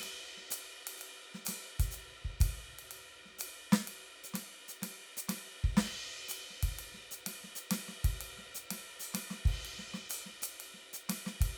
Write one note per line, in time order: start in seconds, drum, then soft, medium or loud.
0.01 hi-hat pedal soft
0.01 ride medium
0.37 snare soft
0.50 hi-hat pedal loud
0.50 ride medium
0.87 ride medium
0.97 hi-hat pedal soft
1.01 ride medium
1.34 snare soft
1.45 snare soft
1.45 hi-hat pedal loud
1.45 ride medium
1.79 open hi-hat medium
1.79 kick soft
1.79 ride medium
1.91 hi-hat pedal medium
1.91 ride soft
2.25 kick soft
2.40 kick medium
2.40 open hi-hat medium
2.40 ride medium
2.79 ride medium
2.91 ride medium
3.25 snare soft
3.30 snare soft
3.33 snare soft
3.39 hi-hat pedal medium
3.39 ride medium
3.72 snare medium
3.72 ride medium
3.87 ride medium
4.24 hi-hat pedal medium
4.34 snare soft
4.34 ride medium
4.68 hi-hat pedal medium
4.82 snare soft
4.82 ride medium
5.17 hi-hat pedal loud
5.29 snare soft
5.29 ride loud
5.64 kick soft
5.77 snare medium
5.77 ride medium
6.28 hi-hat pedal loud
6.28 ride medium
6.50 snare soft
6.63 kick soft
6.63 ride medium
6.72 hi-hat pedal soft
6.79 ride medium
6.94 snare soft
7.11 hi-hat pedal medium
7.26 snare soft
7.26 ride medium
7.43 snare soft
7.55 hi-hat pedal medium
7.71 snare medium
7.71 ride loud
7.78 hi-hat pedal soft
7.88 snare soft
8.04 kick soft
8.04 ride medium
8.21 ride medium
8.38 snare soft
8.54 hi-hat pedal medium
8.70 snare soft
8.70 ride medium
9.00 hi-hat pedal medium
9.14 snare soft
9.14 ride loud
9.30 snare soft
9.45 kick soft
9.45 ride medium
9.65 ride medium
9.78 snare soft
9.94 snare soft
10.09 hi-hat pedal loud
10.09 ride medium
10.26 snare soft
10.42 hi-hat pedal loud
10.42 ride medium
10.60 ride medium
10.73 snare soft
10.93 hi-hat pedal medium
11.09 snare soft
11.09 ride loud
11.26 snare soft
11.40 kick soft
11.40 ride medium